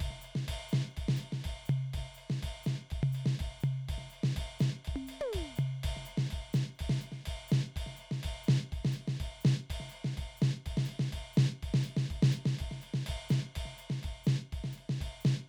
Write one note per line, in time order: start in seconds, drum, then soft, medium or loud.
0.01 kick soft
0.01 ride bell medium
0.08 kick soft
0.08 snare soft
0.22 hi-hat pedal medium
0.22 ride soft
0.36 snare medium
0.49 kick soft
0.49 ride bell medium
0.55 kick soft
0.69 hi-hat pedal medium
0.74 snare loud
0.91 hi-hat pedal soft
0.97 kick soft
0.97 ride bell medium
1.04 kick soft
1.09 snare medium
1.17 hi-hat pedal medium
1.17 ride soft
1.33 snare medium
1.45 kick soft
1.45 ride bell medium
1.52 kick soft
1.66 hi-hat pedal medium
1.70 floor tom loud
1.94 kick soft
1.94 ride bell medium
1.98 kick soft
1.98 snare soft
2.15 hi-hat pedal medium
2.15 ride soft
2.31 snare medium
2.43 kick soft
2.43 ride bell medium
2.49 kick soft
2.64 snare medium
2.64 hi-hat pedal medium
2.91 kick soft
2.91 ride bell medium
2.98 kick soft
3.04 floor tom loud
3.13 hi-hat pedal medium
3.13 ride soft
3.27 snare medium
3.40 kick soft
3.40 ride bell medium
3.47 kick soft
3.61 hi-hat pedal medium
3.61 floor tom loud
3.89 kick soft
3.89 ride bell medium
3.95 kick soft
3.95 snare soft
4.11 hi-hat pedal medium
4.11 ride soft
4.24 snare medium
4.37 kick soft
4.37 ride bell medium
4.43 kick soft
4.60 snare loud
4.60 hi-hat pedal medium
4.85 kick soft
4.85 ride bell medium
4.94 kick soft
4.94 high tom medium
5.08 hi-hat pedal medium
5.08 ride medium
5.21 high tom loud
5.34 kick soft
5.34 ride bell medium
5.41 kick soft
5.56 hi-hat pedal medium
5.56 floor tom loud
5.84 kick soft
5.84 ride bell medium
5.92 kick soft
5.97 snare soft
6.06 hi-hat pedal medium
6.06 ride soft
6.18 snare medium
6.27 hi-hat pedal soft
6.27 ride bell medium
6.33 kick soft
6.39 kick soft
6.54 snare loud
6.54 hi-hat pedal medium
6.75 hi-hat pedal soft
6.80 kick soft
6.80 ride bell medium
6.87 kick soft
6.87 snare medium
7.01 hi-hat pedal medium
7.01 ride soft
7.13 snare soft
7.26 kick soft
7.26 ride bell medium
7.34 kick soft
7.48 hi-hat pedal medium
7.53 snare loud
7.77 kick soft
7.77 ride bell medium
7.82 kick soft
7.87 snare soft
7.97 hi-hat pedal medium
7.97 ride soft
8.12 snare medium
8.24 kick soft
8.24 ride bell medium
8.31 kick soft
8.44 hi-hat pedal medium
8.49 snare loud
8.73 kick soft
8.73 ride bell soft
8.79 kick soft
8.86 snare medium
8.93 hi-hat pedal medium
8.93 ride soft
9.08 snare medium
9.21 kick soft
9.21 ride bell medium
9.26 kick soft
9.41 hi-hat pedal medium
9.46 snare loud
9.71 kick soft
9.71 ride bell medium
9.81 snare soft
9.90 hi-hat pedal medium
9.90 ride soft
10.05 snare medium
10.18 kick soft
10.18 ride bell medium
10.24 kick soft
10.38 hi-hat pedal medium
10.43 snare loud
10.67 kick soft
10.67 ride medium
10.72 kick soft
10.78 snare medium
10.86 hi-hat pedal medium
10.86 ride soft
11.00 snare medium
11.13 kick soft
11.13 ride bell medium
11.19 kick soft
11.34 hi-hat pedal medium
11.38 snare loud
11.63 kick soft
11.63 ride bell medium
11.69 kick soft
11.75 snare loud
11.84 hi-hat pedal medium
11.84 ride soft
11.97 snare medium
12.11 kick soft
12.11 ride bell medium
12.16 kick soft
12.23 snare loud
12.33 hi-hat pedal medium
12.33 ride soft
12.46 snare medium
12.59 kick soft
12.59 ride bell medium
12.72 snare soft
12.82 hi-hat pedal medium
12.82 ride soft
12.95 snare medium
13.07 kick soft
13.07 ride bell medium
13.15 kick soft
13.29 snare loud
13.29 hi-hat pedal medium
13.56 kick soft
13.56 ride bell medium
13.66 snare soft
13.79 hi-hat pedal medium
13.79 ride soft
13.91 snare medium
14.04 kick soft
14.04 ride medium
14.11 kick soft
14.24 snare loud
14.24 hi-hat pedal medium
14.53 kick soft
14.53 ride soft
14.65 snare medium
14.73 hi-hat pedal medium
14.78 ride soft
14.90 snare medium
15.01 kick soft
15.01 ride bell medium
15.21 hi-hat pedal medium
15.26 snare loud